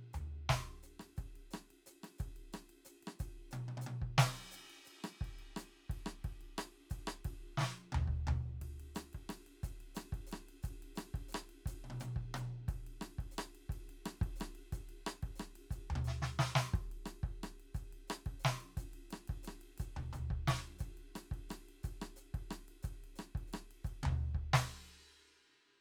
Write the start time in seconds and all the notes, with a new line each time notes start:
0.14 floor tom, hi-hat pedal
0.50 kick, snare, ride
0.83 hi-hat pedal, ride
1.00 cross-stick, ride
1.17 kick, hi-hat pedal, ride
1.36 ride
1.51 cross-stick, hi-hat pedal, ride
1.71 ride
1.87 hi-hat pedal, ride
2.04 cross-stick, ride
2.19 kick, hi-hat pedal, ride
2.37 ride
2.53 cross-stick, hi-hat pedal, ride
2.70 ride
2.86 hi-hat pedal, ride
3.03 ride
3.08 cross-stick
3.20 kick, hi-hat pedal, ride
3.52 hi-hat pedal, high tom
3.69 high tom
3.78 high tom
3.82 hi-hat pedal
3.87 high tom
4.02 kick
4.19 snare, crash
4.52 hi-hat pedal, ride
4.70 ride
4.85 hi-hat pedal, ride
5.05 cross-stick, ride
5.22 kick, ride
5.40 ride
5.57 cross-stick, hi-hat pedal, ride
5.90 kick, ride
6.07 cross-stick
6.25 kick, ride
6.42 ride
6.59 cross-stick, hi-hat pedal, ride
6.91 kick, hi-hat pedal, ride
7.08 cross-stick
7.25 kick, hi-hat pedal, ride
7.58 snare
7.62 snare
7.93 floor tom, high tom
8.08 kick
8.28 floor tom, high tom
8.62 kick, ride
8.81 ride
8.96 cross-stick, hi-hat pedal, ride
9.14 kick, ride
9.30 cross-stick, ride
9.47 ride
9.64 kick, hi-hat pedal, ride
9.81 ride
9.95 cross-stick, hi-hat pedal, ride
10.13 kick, ride
10.27 hi-hat pedal
10.32 cross-stick, ride
10.49 ride
10.63 kick, hi-hat pedal, ride
10.83 ride
10.96 cross-stick, hi-hat pedal, ride
11.15 kick, ride
11.29 hi-hat pedal
11.33 cross-stick, ride
11.50 ride
11.66 kick, hi-hat pedal, ride
11.85 high tom
11.91 high tom
12.01 hi-hat pedal, high tom
12.17 kick
12.35 hi-hat pedal, high tom
12.69 kick, hi-hat pedal, ride
12.87 ride
13.02 cross-stick, ride
13.19 kick, ride
13.32 hi-hat pedal
13.39 cross-stick, ride
13.56 ride
13.70 kick, hi-hat pedal, ride
13.90 ride
14.06 cross-stick, ride
14.22 kick, ride
14.36 hi-hat pedal
14.41 cross-stick, ride
14.56 ride
14.73 kick, hi-hat pedal, ride
14.90 ride
15.07 cross-stick, ride
15.23 kick, ride
15.36 hi-hat pedal
15.40 cross-stick, ride
15.56 ride
15.71 kick, hi-hat pedal, ride
15.91 floor tom
15.96 high tom
16.05 snare, hi-hat pedal
16.23 snare
16.39 snare, hi-hat pedal
16.56 snare
16.73 kick, hi-hat pedal, ride
16.92 ride
17.06 cross-stick, hi-hat pedal, ride
17.24 kick
17.44 cross-stick, ride
17.60 ride
17.75 kick, hi-hat pedal, ride
17.93 ride
18.08 cross-stick, hi-hat pedal, ride
18.27 kick, ride
18.40 hi-hat pedal
18.45 snare, ride
18.61 ride
18.78 kick, hi-hat pedal, ride
18.94 ride
19.11 cross-stick, hi-hat pedal, ride
19.28 kick, ride
19.44 hi-hat pedal, ride
19.48 cross-stick
19.62 ride
19.78 kick, hi-hat pedal, ride
19.97 floor tom, high tom
20.13 floor tom, hi-hat pedal, high tom
20.31 kick
20.48 snare, ride
20.79 kick, hi-hat pedal, ride
20.98 ride
21.16 cross-stick, hi-hat pedal, ride
21.32 kick, ride
21.50 cross-stick, hi-hat pedal, ride
21.69 ride
21.84 kick, hi-hat pedal, ride
22.02 cross-stick, ride
22.17 hi-hat pedal, ride
22.35 kick, ride
22.51 cross-stick, hi-hat pedal, ride
22.69 ride
22.83 kick, hi-hat pedal, ride
23.05 ride
23.16 cross-stick, hi-hat pedal, ride
23.36 kick, ride
23.48 hi-hat pedal
23.54 cross-stick, ride
23.72 ride
23.85 kick, hi-hat pedal, ride
24.04 floor tom, high tom
24.35 kick
24.54 snare, crash